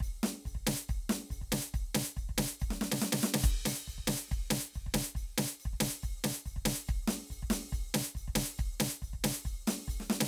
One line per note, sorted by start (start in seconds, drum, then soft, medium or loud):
0.01 kick medium
0.01 snare soft
0.01 percussion medium
0.24 snare loud
0.24 percussion medium
0.46 kick soft
0.46 snare soft
0.46 percussion soft
0.56 kick soft
0.67 snare loud
0.67 percussion medium
0.89 kick medium
0.89 percussion medium
1.10 snare loud
1.10 percussion medium
1.31 kick soft
1.31 snare soft
1.31 percussion medium
1.42 kick soft
1.53 snare loud
1.53 percussion medium
1.74 kick medium
1.74 snare soft
1.74 percussion medium
1.95 snare loud
1.95 percussion medium
2.17 kick soft
2.17 snare soft
2.17 percussion soft
2.30 kick soft
2.38 snare loud
2.38 percussion medium
2.61 kick medium
2.61 percussion medium
2.71 snare medium
2.82 snare loud
2.92 snare loud
3.02 snare loud
3.13 snare loud
3.24 snare loud
3.34 snare loud
3.44 kick loud
3.44 crash medium
3.66 snare loud
3.66 percussion loud
3.88 kick soft
3.88 snare soft
3.88 percussion medium
3.99 kick soft
4.08 snare loud
4.08 percussion loud
4.29 kick medium
4.29 snare soft
4.29 percussion medium
4.51 snare loud
4.51 percussion medium
4.73 kick soft
4.73 snare soft
4.73 percussion soft
4.87 kick soft
4.95 snare loud
4.95 percussion medium
5.16 kick soft
5.16 snare soft
5.16 percussion medium
5.38 snare loud
5.38 percussion medium
5.60 snare soft
5.60 percussion medium
5.66 kick soft
5.74 kick soft
5.81 snare loud
5.81 percussion loud
6.03 kick soft
6.03 percussion medium
6.25 snare loud
6.25 percussion medium
6.46 kick soft
6.46 percussion medium
6.57 kick soft
6.66 snare loud
6.66 percussion medium
6.87 kick medium
6.87 snare soft
6.87 percussion medium
7.08 snare loud
7.08 percussion medium
7.30 kick soft
7.30 snare soft
7.30 percussion medium
7.43 kick soft
7.51 snare loud
7.51 percussion loud
7.71 kick medium
7.71 snare soft
7.71 percussion medium
7.95 snare loud
7.95 percussion medium
8.16 kick soft
8.16 percussion medium
8.28 kick soft
8.36 snare loud
8.36 percussion loud
8.58 kick medium
8.58 snare soft
8.58 percussion medium
8.81 snare loud
8.81 percussion medium
9.02 kick soft
9.02 snare soft
9.02 percussion soft
9.14 kick soft
9.25 snare loud
9.25 percussion loud
9.45 kick soft
9.45 snare soft
9.45 percussion medium
9.68 snare loud
9.68 percussion loud
9.83 snare soft
9.88 kick soft
9.88 percussion medium
10.01 snare medium
10.07 hi-hat pedal soft
10.11 snare loud
10.21 snare loud